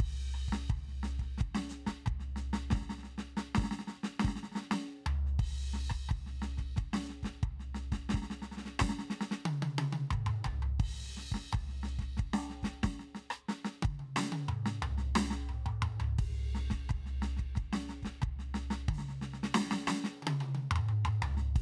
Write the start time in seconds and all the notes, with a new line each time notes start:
0.01 kick, crash
0.35 cross-stick
0.49 kick
0.53 snare
0.71 kick, floor tom
0.89 snare
1.04 snare, hi-hat pedal
1.20 kick, snare
1.38 kick, snare
1.55 snare
1.70 snare, hi-hat pedal
1.87 kick, snare
2.07 kick, floor tom
2.21 snare
2.37 snare, hi-hat pedal
2.54 snare
2.71 kick, snare
2.76 snare
2.82 kick, snare
2.90 snare
2.99 snare
3.04 snare
3.19 snare
3.38 snare
3.56 kick, snare
3.60 snare
3.64 snare
3.72 snare
3.80 snare
3.88 snare
3.92 snare
4.04 snare
4.20 snare
4.25 kick, snare
4.29 snare
4.37 snare
4.44 snare
4.53 snare
4.56 snare
4.62 snare
4.72 snare
5.07 floor tom
5.27 snare
5.40 kick, snare, crash
5.74 snare
5.90 kick, cross-stick
6.10 kick, floor tom
6.27 snare
6.43 snare, hi-hat pedal
6.58 kick, snare
6.77 kick, snare
6.94 snare
7.05 hi-hat pedal
7.10 snare
7.24 kick, snare
7.44 kick, floor tom
7.60 snare
7.75 snare, hi-hat pedal
7.93 kick, snare
8.10 snare
8.15 kick, snare
8.23 snare
8.31 snare
8.43 snare
8.52 snare
8.58 snare
8.61 snare
8.66 snare
8.80 kick, snare
8.90 kick, snare
8.99 snare
9.11 snare
9.22 snare
9.32 snare
9.46 high tom
9.63 high tom
9.79 high tom
9.93 high tom
10.11 kick, mid tom
10.27 mid tom
10.45 kick, floor tom
10.63 floor tom
10.80 kick, crash
11.17 snare, hi-hat pedal
11.32 kick, snare
11.54 kick, floor tom
11.69 snare
11.84 snare, hi-hat pedal
11.99 kick, snare
12.18 kick, snare
12.34 snare
12.50 snare, hi-hat pedal
12.64 kick, snare
12.84 kick, snare
13.00 snare
13.16 snare, hi-hat pedal
13.31 cross-stick
13.49 snare
13.65 snare
13.83 kick, high tom
13.95 kick
14.00 high tom
14.17 snare
14.22 snare
14.33 high tom
14.49 mid tom
14.67 snare
14.83 floor tom
14.98 snare
15.16 snare
15.31 snare
15.50 mid tom
15.67 mid tom
15.83 mid tom
16.01 floor tom
16.20 kick, ride
16.24 hi-hat pedal
16.55 snare
16.71 kick, snare
16.90 kick, floor tom
17.07 snare
17.23 snare, hi-hat pedal
17.37 kick, snare
17.56 kick, snare
17.74 snare
17.88 snare, hi-hat pedal
18.03 kick, snare
18.22 kick, floor tom
18.40 snare
18.55 snare, hi-hat pedal
18.71 snare
18.89 kick, high tom
18.94 kick, hi-hat pedal
18.99 snare
19.09 snare
19.22 snare
19.34 snare
19.44 snare
19.55 snare
19.72 snare
19.88 snare
20.05 snare
20.23 high tom
20.28 high tom
20.41 high tom
20.55 high tom
20.72 mid tom
20.77 mid tom
20.89 mid tom
21.06 mid tom
21.23 floor tom
21.38 snare
21.56 kick, ride